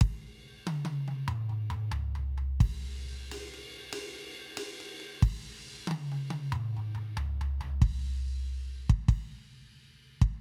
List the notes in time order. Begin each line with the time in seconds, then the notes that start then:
0.01 kick, ride
0.67 high tom
0.85 high tom
1.08 high tom
1.28 mid tom
1.49 mid tom
1.70 mid tom
1.91 floor tom
2.15 floor tom
2.38 floor tom
2.60 kick, ride, crash
3.32 ride
3.54 ride
3.71 ride
3.93 ride
4.16 ride
4.35 ride
4.57 ride
4.80 ride
5.00 ride
5.22 kick, ride, crash
5.87 high tom
5.91 high tom
6.12 high tom
6.30 high tom
6.52 mid tom
6.76 mid tom
6.95 mid tom
7.17 floor tom
7.41 floor tom
7.61 floor tom
7.82 kick, crash
8.90 kick
9.08 kick, crash
10.21 kick